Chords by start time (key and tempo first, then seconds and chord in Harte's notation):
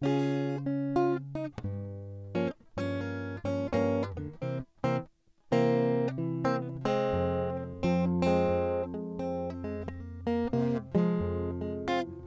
F minor, 88 BPM
0.00 C#:maj
1.67 G:hdim7
4.39 C:7(*5)
7.12 F:min